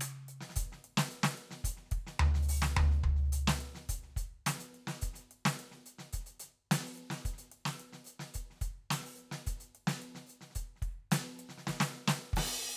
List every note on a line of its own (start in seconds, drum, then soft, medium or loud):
0.01 closed hi-hat loud
0.01 cross-stick medium
0.16 snare soft
0.29 hi-hat pedal soft
0.29 open hi-hat medium
0.41 snare medium
0.50 snare soft
0.56 closed hi-hat loud
0.56 kick medium
0.63 kick soft
0.67 kick soft
0.73 snare soft
0.85 closed hi-hat soft
0.98 snare loud
1.11 closed hi-hat soft
1.24 snare loud
1.38 closed hi-hat soft
1.51 snare medium
1.65 closed hi-hat loud
1.65 kick soft
1.70 kick soft
1.77 snare soft
1.86 snare soft
1.92 kick medium
1.92 closed hi-hat medium
1.98 kick soft
2.07 snare medium
2.20 floor tom loud
2.35 snare soft
2.43 hi-hat pedal medium
2.49 open hi-hat loud
2.62 snare loud
2.62 hi-hat pedal soft
2.77 kick soft
2.77 floor tom loud
2.91 snare soft
3.04 kick soft
3.04 floor tom loud
3.11 kick soft
3.16 snare soft
3.24 snare soft
3.33 closed hi-hat medium
3.48 snare loud
3.61 closed hi-hat soft
3.75 snare soft
3.89 closed hi-hat loud
3.89 kick soft
4.03 snare soft
4.10 snare soft
4.15 closed hi-hat medium
4.15 kick soft
4.15 snare soft
4.26 kick soft
4.47 closed hi-hat loud
4.47 snare loud
4.58 closed hi-hat medium
4.58 snare soft
4.75 closed hi-hat soft
4.88 snare medium
5.02 closed hi-hat medium
5.02 kick soft
5.09 kick soft
5.14 closed hi-hat medium
5.14 snare soft
5.21 snare soft
5.31 closed hi-hat soft
5.46 snare loud
5.60 closed hi-hat soft
5.72 snare soft
5.86 closed hi-hat medium
5.99 snare medium
6.13 closed hi-hat medium
6.13 kick soft
6.21 snare soft
6.26 closed hi-hat medium
6.26 snare soft
6.34 snare soft
6.36 closed hi-hat medium
6.36 snare soft
6.42 snare soft
6.72 closed hi-hat loud
6.72 snare loud
6.80 snare soft
6.86 open hi-hat soft
6.94 closed hi-hat soft
6.94 hi-hat pedal medium
7.11 snare medium
7.21 snare soft
7.21 hi-hat pedal soft
7.25 closed hi-hat medium
7.25 kick soft
7.31 kick soft
7.31 snare soft
7.38 closed hi-hat medium
7.38 snare soft
7.43 snare soft
7.47 snare soft
7.52 closed hi-hat soft
7.66 snare medium
7.80 closed hi-hat soft
7.93 snare soft
8.05 closed hi-hat medium
8.05 hi-hat pedal medium
8.20 snare medium
8.34 closed hi-hat medium
8.34 kick soft
8.51 snare soft
8.55 snare soft
8.59 closed hi-hat medium
8.59 kick soft
8.59 snare soft
8.71 kick soft
8.91 closed hi-hat medium
8.91 snare loud
9.01 snare soft
9.06 open hi-hat medium
9.16 hi-hat pedal medium
9.20 closed hi-hat soft
9.32 snare medium
9.46 closed hi-hat medium
9.46 kick soft
9.46 snare soft
9.53 kick soft
9.57 closed hi-hat medium
9.57 snare soft
9.63 snare soft
9.75 closed hi-hat soft
9.88 snare loud
10.02 closed hi-hat soft
10.15 snare soft
10.27 closed hi-hat soft
10.27 hi-hat pedal soft
10.41 snare soft
10.51 snare soft
10.56 closed hi-hat medium
10.56 kick soft
10.76 snare soft
10.82 kick soft
10.82 closed hi-hat soft
10.89 kick soft
10.92 kick soft
11.12 open hi-hat loud
11.12 snare loud
11.22 snare soft
11.39 hi-hat pedal soft
11.39 open hi-hat medium
11.49 snare soft
11.58 snare soft
11.67 kick soft
11.67 snare loud
11.81 snare loud
11.92 snare soft
12.08 snare loud
12.33 kick medium
12.33 snare loud
12.33 hi-hat pedal soft
12.33 crash loud
12.40 kick soft
12.44 kick soft
12.44 cross-stick medium
12.54 open hi-hat soft